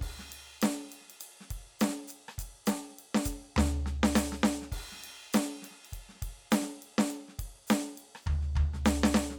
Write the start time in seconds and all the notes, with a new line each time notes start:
0.01 kick, crash
0.11 kick
0.19 snare
0.27 cross-stick, snare
0.32 ride
0.62 snare, hi-hat pedal, ride
0.89 hi-hat pedal, ride
1.01 snare
1.07 snare, ride
1.12 snare
1.20 hi-hat pedal, ride
1.40 snare
1.47 kick, snare, ride
1.56 kick
1.59 kick
1.79 snare, hi-hat pedal, ride
1.88 snare
2.07 hi-hat pedal, ride
2.28 cross-stick
2.38 kick, snare, hi-hat pedal, ride
2.47 kick
2.66 kick, snare, hi-hat pedal, ride
2.99 ride
3.14 snare
3.24 kick, hi-hat pedal, ride
3.32 kick
3.36 kick
3.56 snare, floor tom
3.64 snare
3.86 snare
4.03 snare
4.15 snare, hi-hat pedal
4.24 snare
4.32 snare
4.43 snare
4.62 snare
4.72 kick, crash
4.78 kick
4.92 snare
4.98 snare
5.02 snare, ride
5.06 snare
5.33 snare, hi-hat pedal, ride
5.62 snare, ride
5.71 snare
5.85 ride
5.90 kick, hi-hat pedal, ride
6.09 snare
6.15 snare
6.22 kick, ride
6.28 kick
6.51 snare, hi-hat pedal, ride
6.62 snare
6.82 ride
6.98 snare
7.08 hi-hat pedal, ride
7.28 snare
7.39 kick, ride
7.45 kick
7.48 kick
7.67 snare, hi-hat pedal, ride
7.94 hi-hat pedal, ride
8.15 cross-stick
8.22 hi-hat pedal
8.26 kick, floor tom
8.32 kick
8.41 snare
8.55 kick, floor tom
8.63 kick
8.73 snare
8.85 snare, hi-hat pedal
9.03 snare
9.11 snare, hi-hat pedal
9.30 snare